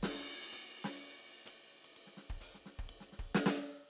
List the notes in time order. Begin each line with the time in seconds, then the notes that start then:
0.01 snare, hi-hat pedal, ride
0.43 snare
0.53 hi-hat pedal, ride
0.84 snare, ride
0.96 hi-hat pedal, ride
1.46 hi-hat pedal, ride
1.85 ride
1.91 hi-hat pedal
1.97 ride
2.07 snare
2.17 snare
2.30 kick
2.41 hi-hat pedal, ride
2.55 snare
2.61 hi-hat pedal
2.66 snare
2.79 kick
2.87 hi-hat pedal, ride
3.01 snare
3.13 snare
3.19 kick
3.35 snare, hi-hat pedal
3.46 snare